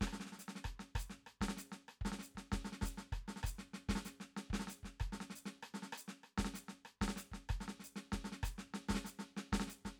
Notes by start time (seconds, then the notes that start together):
0.01 kick, snare
0.07 cross-stick
0.13 snare
0.20 snare
0.26 snare
0.32 snare
0.39 snare, hi-hat pedal
0.48 snare
0.55 snare
0.64 kick, cross-stick
0.79 snare
0.95 kick, cross-stick
0.99 hi-hat pedal
1.10 snare
1.26 cross-stick
1.41 kick, snare
1.48 snare
1.57 snare, hi-hat pedal
1.72 snare
1.88 cross-stick
2.01 kick, snare
2.12 snare
2.19 snare, hi-hat pedal
2.35 kick, snare
2.52 kick, snare
2.58 kick
2.65 snare
2.72 snare
2.81 kick, snare
2.85 hi-hat pedal
2.98 snare
3.12 kick, cross-stick
3.28 snare
3.36 snare
3.43 kick, cross-stick, hi-hat pedal
3.58 snare
3.74 snare
3.89 kick, snare
3.95 kick, snare
4.05 snare, hi-hat pedal
4.20 snare
4.37 snare
4.50 kick, snare
4.60 snare
4.67 snare, hi-hat pedal
4.83 kick, snare
5.00 kick, cross-stick
5.12 snare
5.20 snare
5.30 snare
5.35 hi-hat pedal
5.46 snare
5.63 cross-stick
5.74 snare
5.82 snare
5.93 cross-stick
5.98 hi-hat pedal
6.08 snare
6.23 cross-stick
6.38 kick, snare
6.45 snare
6.54 snare, hi-hat pedal
6.68 snare
6.85 cross-stick
7.01 kick, snare
7.08 snare
7.16 snare, hi-hat pedal
7.32 kick, snare
7.49 kick, cross-stick
7.61 snare
7.68 snare
7.80 snare
7.84 hi-hat pedal
7.96 snare
8.12 kick, snare
8.24 snare
8.32 snare
8.43 kick, cross-stick, hi-hat pedal
8.58 snare
8.74 snare
8.89 kick, snare
8.95 snare
9.05 snare, hi-hat pedal
9.19 snare
9.37 snare
9.52 kick, snare
9.60 snare
9.67 snare, hi-hat pedal
9.85 kick, snare